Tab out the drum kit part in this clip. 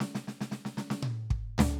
SD |oooooooo----o---|
T1 |--------o-------|
FT |------------o---|
BD |----------o-----|